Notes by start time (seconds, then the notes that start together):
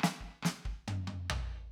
0.00 cross-stick, snare
0.20 kick
0.42 cross-stick, snare
0.65 kick
0.87 high tom
1.07 high tom
1.30 floor tom